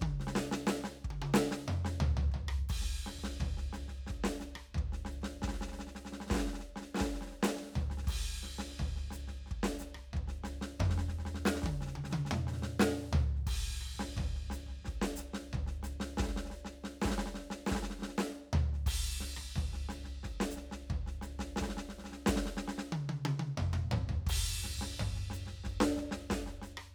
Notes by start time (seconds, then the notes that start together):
0.01 kick, high tom
0.10 kick
0.20 snare
0.27 snare
0.35 snare
0.51 snare
0.67 snare
0.84 snare
1.04 kick
1.10 kick, high tom
1.22 high tom
1.34 snare
1.51 snare
1.68 mid tom
1.85 snare
2.00 floor tom
2.17 floor tom
2.31 kick, floor tom
2.48 cross-stick
2.69 kick, crash
2.81 kick, snare
3.04 snare, hi-hat pedal
3.18 kick
3.23 snare
3.40 kick, floor tom
3.57 snare
3.73 snare, hi-hat pedal
3.88 kick, snare
4.06 kick, snare
4.24 snare
4.40 snare, hi-hat pedal
4.55 kick, cross-stick
4.74 kick, floor tom
4.92 snare
5.05 snare
5.11 hi-hat pedal
5.21 kick, snare
5.42 kick, snare
5.48 snare
5.53 snare
5.61 snare
5.67 snare
5.72 snare
5.79 snare
5.87 snare
5.95 snare
6.03 snare
6.05 snare
6.12 snare
6.20 snare
6.27 kick, snare
6.34 snare
6.38 snare
6.45 snare
6.47 snare
6.53 snare
6.59 snare
6.76 snare
6.81 snare
6.94 snare
6.98 kick, snare
7.00 snare
7.03 snare
7.07 snare
7.11 snare
7.13 snare
7.21 snare
7.26 snare
7.31 snare
7.39 snare
7.43 snare
7.47 snare
7.56 snare
7.62 snare
7.66 snare
7.71 snare, floor tom
7.76 kick
7.90 snare
7.97 snare
8.03 kick, snare
8.08 snare, crash
8.15 snare
8.43 snare, hi-hat pedal
8.58 kick, snare
8.69 snare
8.79 kick, floor tom
8.96 snare
9.10 snare, hi-hat pedal
9.27 kick, snare
9.46 snare
9.51 kick
9.63 snare
9.79 snare, hi-hat pedal
9.94 kick, cross-stick
10.13 kick, floor tom
10.28 snare
10.44 snare, hi-hat pedal
10.61 snare
10.79 kick, mid tom
10.88 kick, snare
10.98 snare
11.08 snare
11.19 snare
11.25 snare
11.34 snare
11.45 snare
11.62 kick, snare, high tom
11.81 snare
11.86 snare
11.95 high tom
12.04 snare
12.10 snare, high tom
12.14 kick
12.25 snare
12.31 snare, mid tom
12.47 snare
12.52 snare
12.57 snare
12.62 snare
12.79 snare
13.02 snare
13.13 kick, floor tom
13.35 snare
13.46 kick, crash
13.81 cross-stick
13.95 kick
13.99 snare
14.16 kick, floor tom
14.35 snare
14.50 snare, hi-hat pedal
14.66 kick, snare
14.84 kick, snare
15.01 snare
15.16 snare, hi-hat pedal
15.33 kick, snare
15.53 kick, floor tom
15.66 snare
15.83 snare, hi-hat pedal
16.00 snare
16.17 kick, snare
16.22 snare
16.28 kick, snare
16.36 snare
16.45 snare
16.50 snare
16.65 snare
16.84 snare
17.02 kick, snare
17.06 snare
17.10 snare
17.18 snare
17.26 snare
17.34 snare
17.38 snare
17.50 snare
17.66 snare
17.71 kick, snare
17.75 snare
17.82 snare
17.90 snare
17.98 snare
18.02 snare
18.08 snare
18.18 snare
18.53 floor tom
18.73 snare
18.86 kick, snare, crash
19.20 snare
19.36 kick, cross-stick
19.55 kick, floor tom
19.73 snare
19.89 snare, hi-hat pedal
20.04 kick, snare
20.23 kick, snare
20.40 snare
20.51 hi-hat pedal
20.56 snare
20.70 kick, snare
20.90 kick, floor tom
21.06 snare
21.21 snare, hi-hat pedal
21.39 kick, snare
21.56 snare
21.61 kick, snare
21.69 snare
21.77 snare
21.89 snare
21.98 snare
22.04 snare
22.07 snare
22.12 snare
22.26 kick, snare
22.36 kick, snare
22.45 snare
22.57 snare
22.68 snare
22.78 snare
22.92 high tom
23.09 high tom
23.25 high tom
23.39 high tom
23.57 kick, mid tom
23.73 mid tom
23.91 kick, floor tom
24.09 floor tom
24.26 kick, crash
24.63 snare, hi-hat pedal
24.78 kick, snare
24.99 kick, floor tom
25.15 snare
25.30 snare, hi-hat pedal
25.45 kick, snare
25.64 kick, snare
25.80 snare
25.96 snare, hi-hat pedal
26.10 kick, snare
26.30 kick, snare
26.46 snare
26.62 snare, hi-hat pedal
26.77 cross-stick